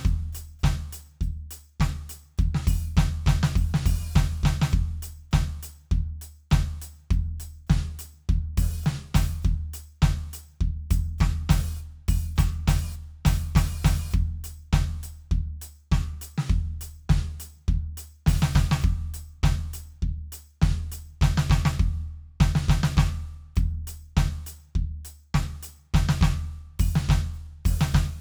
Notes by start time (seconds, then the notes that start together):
0.01 percussion
0.05 kick, percussion
0.33 percussion
0.35 percussion
0.59 percussion
0.64 kick, snare
0.93 percussion
1.21 kick, percussion
1.51 percussion
1.80 kick, snare
2.10 percussion
2.38 kick, percussion
2.55 snare
2.67 kick, percussion
2.97 kick, snare
3.17 snare
3.26 kick, snare
3.43 snare
3.56 kick, percussion
3.74 snare
3.86 kick, percussion
4.16 kick, snare
4.44 kick, snare
4.62 snare
4.71 kick, percussion
5.03 percussion
5.31 kick, snare, percussion
5.63 percussion
5.91 kick, percussion
6.22 percussion
6.51 kick, snare, percussion
6.82 percussion
7.11 kick, percussion
7.40 percussion
7.67 kick, snare, percussion
7.99 percussion
8.29 kick, percussion
8.58 kick, percussion
8.83 snare, percussion
8.88 percussion
9.15 kick, snare, percussion
9.43 kick, percussion
9.46 percussion
9.74 percussion
10.02 kick, snare
10.33 percussion
10.61 kick
10.91 kick, percussion
11.19 kick, snare, percussion
11.50 kick, snare, percussion
11.77 percussion
12.08 kick, percussion
12.36 kick, snare, percussion
12.39 percussion
12.68 kick, snare, percussion
12.92 percussion
13.25 kick, snare, percussion
13.55 kick, snare, percussion
13.85 kick, snare, percussion
14.12 kick, percussion
14.44 percussion
14.73 kick, snare
15.03 percussion
15.31 kick
15.62 percussion
15.92 kick, snare
16.22 percussion
16.38 snare
16.45 percussion
16.50 kick
16.81 percussion
17.10 kick, snare
17.40 percussion
17.68 kick
17.97 percussion
18.27 kick, snare, percussion
18.42 snare
18.55 kick, snare
18.71 snare
18.81 kick, percussion
19.14 percussion
19.43 kick, snare
19.74 percussion
20.02 kick
20.32 percussion
20.62 kick, snare
20.92 percussion
21.21 kick, snare
21.38 snare
21.50 kick, snare
21.65 snare
21.80 kick
22.09 kick
22.12 kick
22.40 kick, snare
22.55 snare
22.69 kick, snare
22.83 snare
22.97 kick, snare
23.56 kick, percussion
23.87 percussion
24.17 kick, snare
24.47 percussion
24.75 kick
25.05 percussion
25.34 kick, snare
25.63 percussion
25.94 kick, snare
26.09 snare
26.21 kick, snare
26.79 kick, percussion
26.96 snare
27.09 kick, snare
27.34 percussion
27.65 kick, percussion
27.81 snare
27.94 kick, snare